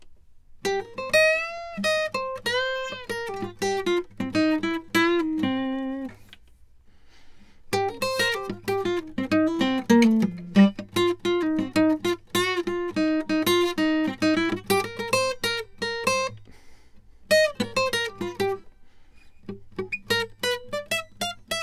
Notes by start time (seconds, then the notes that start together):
0.65 G4
0.80 A#4
0.99 C5
1.14 D#5
1.31 E5
1.84 D#5
2.15 C5
2.46 B4 C5
3.10 A#4
3.27 G4
3.43 F4
3.62 G4
3.87 F4
4.36 D#4
4.64 E4
4.95 E4
5.20 D#4
5.44 C4
7.73 G4
7.89 A#4
8.03 C5
8.20 A#4
8.33 G4 C5
8.68 G4
8.86 F4
8.97 D#4
9.18 C4
9.32 D#4
9.48 E4
9.62 C4
9.90 A#3
10.04 A3
10.23 F3
10.56 G3
10.97 F4
11.25 F4
11.42 D#4
11.59 C4
11.76 D#4
12.05 F4
12.35 F#4
12.68 F4
12.97 D#4
13.30 D#4
13.47 F4
13.78 D#4
14.08 C4
14.23 D#4
14.38 E4
14.53 F#4
14.71 G4
14.80 A#4
15.00 A#4
15.13 C5
15.44 A#4
15.82 A#4
16.07 C5
17.31 D#5
17.45 D5
17.56 C5
17.61 A#4
17.77 C5
17.94 A#4
18.06 A4
18.22 F4
18.40 G4
20.11 A#4
20.44 B4
20.73 D5
20.92 E5
21.22 F5
21.52 E5